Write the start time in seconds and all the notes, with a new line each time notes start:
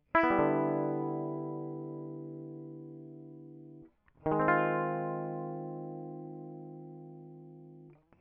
0.15 E4
0.24 B3
0.31 G3
0.40 D3
4.27 D#3
4.32 G#3
4.40 C4
4.48 F4